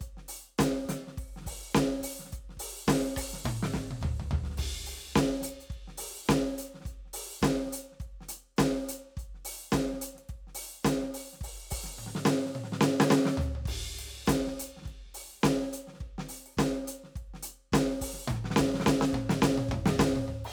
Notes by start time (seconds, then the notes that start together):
0.01 closed hi-hat, kick
0.17 snare
0.28 open hi-hat
0.58 closed hi-hat, kick, snare, hi-hat pedal
0.85 closed hi-hat, kick, snare
1.07 snare
1.18 kick, open hi-hat
1.36 snare
1.41 snare
1.45 open hi-hat, kick, snare
1.50 snare
1.72 closed hi-hat, snare, hi-hat pedal
1.76 kick
1.99 kick, snare
2.03 open hi-hat
2.19 snare
2.25 snare
2.30 kick, snare, hi-hat pedal, open hi-hat
2.49 snare
2.57 open hi-hat, kick
2.88 open hi-hat, kick, snare
3.17 open hi-hat, kick, cross-stick
3.33 snare
3.45 kick, high tom
3.63 snare
3.74 kick, snare
3.91 high tom
4.01 kick, floor tom
4.20 floor tom
4.31 kick, floor tom
4.44 snare
4.50 snare
4.57 kick, snare, hi-hat pedal, ride
4.77 snare
4.86 open hi-hat
5.15 kick, snare, hi-hat pedal
5.41 open hi-hat, snare
5.60 closed hi-hat
5.70 kick, closed hi-hat
5.88 snare
5.98 open hi-hat, snare
6.27 kick, snare, closed hi-hat, hi-hat pedal
6.53 snare
6.58 open hi-hat
6.74 snare
6.81 snare
6.85 closed hi-hat, kick, snare
7.05 kick, snare
7.13 open hi-hat
7.40 kick, snare, closed hi-hat, hi-hat pedal
7.66 snare
7.73 open hi-hat
7.92 snare
8.00 kick, closed hi-hat, hi-hat pedal
8.21 snare
8.29 closed hi-hat
8.57 closed hi-hat, kick, snare, hi-hat pedal
8.82 snare
8.89 closed hi-hat
9.17 closed hi-hat, kick
9.35 snare
9.45 open hi-hat
9.70 closed hi-hat, kick, snare, hi-hat pedal
9.93 kick, snare
10.02 closed hi-hat
10.15 snare, closed hi-hat
10.29 kick, closed hi-hat
10.47 snare
10.55 open hi-hat
10.83 closed hi-hat, kick, snare, hi-hat pedal
11.02 snare
11.14 open hi-hat
11.33 snare
11.41 open hi-hat, kick
11.71 open hi-hat, kick
11.84 snare
11.99 high tom
12.07 snare
12.15 snare
12.25 snare
12.46 snare
12.55 high tom
12.64 snare
12.72 snare
12.81 snare
13.00 snare
13.11 snare
13.26 snare
13.38 floor tom, hi-hat pedal
13.55 high tom
13.66 kick, ride
13.99 open hi-hat
14.26 closed hi-hat, kick, snare, hi-hat pedal
14.47 snare
14.60 closed hi-hat
14.77 snare
14.82 kick, snare
14.88 closed hi-hat
15.05 snare
15.14 open hi-hat
15.41 closed hi-hat, kick, snare, hi-hat pedal
15.62 snare
15.73 closed hi-hat
15.87 snare
15.94 snare
15.99 kick, snare, closed hi-hat
16.18 snare
16.29 open hi-hat
16.46 open hi-hat
16.54 kick, hi-hat pedal
16.59 closed hi-hat, snare
16.83 snare
16.88 closed hi-hat
17.04 snare
17.16 kick, closed hi-hat
17.34 snare
17.43 closed hi-hat
17.73 closed hi-hat, kick, snare
17.91 snare
18.01 open hi-hat, kick
18.13 snare
18.28 kick, hi-hat pedal, high tom
18.34 snare
18.45 snare
18.50 snare
18.56 kick, snare
18.67 snare
18.74 snare
18.80 snare
18.86 kick, snare
19.01 snare
19.13 kick, high tom
19.30 snare
19.42 kick, snare
19.58 high tom
19.69 kick, mid tom
19.86 snare
19.99 kick, snare
20.08 hi-hat pedal
20.16 high tom
20.28 floor tom
20.40 kick
20.45 crash